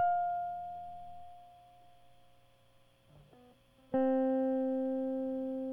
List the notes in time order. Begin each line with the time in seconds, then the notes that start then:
0.00 F5
3.94 C4